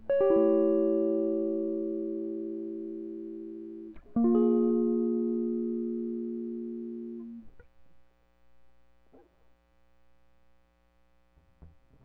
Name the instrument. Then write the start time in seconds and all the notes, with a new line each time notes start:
electric guitar
0.10 C#5
0.21 G4
0.31 E4
4.17 A#3
4.25 F4
4.35 G#4